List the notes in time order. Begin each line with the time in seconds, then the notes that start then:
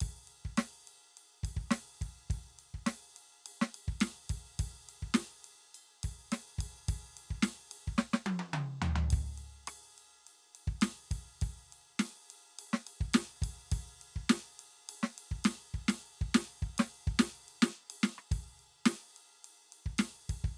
0.00 kick, ride
0.27 ride
0.45 kick
0.57 snare, ride
0.87 ride
1.17 ride
1.43 kick, ride
1.56 kick
1.71 snare, ride
2.01 kick, ride
2.30 kick, ride
2.59 ride
2.74 kick
2.82 kick
2.86 snare, ride
3.16 ride
3.46 ride
3.61 snare
3.74 ride
3.88 kick
4.00 snare, ride
4.29 kick, ride
4.59 kick, ride
4.89 ride
5.02 kick
5.10 kick, snare
5.15 ride
5.44 ride
5.74 ride bell
6.03 kick, ride
6.32 snare, ride
6.58 kick, ride
6.88 kick, ride
7.17 ride
7.30 kick
7.42 snare, ride
7.71 ride
7.87 kick
7.98 snare
8.13 snare
8.26 open hi-hat, high tom
8.39 high tom
8.53 mid tom
8.82 floor tom
8.96 floor tom
9.10 kick, ride
9.38 ride
9.67 cross-stick, ride
9.98 ride
10.27 ride
10.55 ride
10.67 kick
10.81 snare, ride
11.11 kick, ride
11.41 kick, ride
11.72 ride
11.99 snare, ride
12.30 ride
12.59 ride
12.73 snare
12.87 ride
13.00 kick
13.14 snare, ride
13.42 kick, ride
13.72 kick, ride
14.01 ride
14.16 kick
14.29 snare, ride
14.59 ride
14.89 ride
15.03 snare
15.18 ride
15.31 kick
15.44 snare, ride
15.74 kick
15.88 snare, ride
16.21 kick
16.34 snare, ride
16.62 kick
16.78 snare, ride
17.07 kick
17.19 snare, ride
17.48 ride
17.62 snare
17.90 ride
18.03 snare
18.18 cross-stick
18.31 kick, ride
18.59 ride
18.85 snare, ride
19.16 ride
19.44 ride
19.72 ride
19.86 kick
19.98 snare, ride
20.29 kick, ride
20.44 kick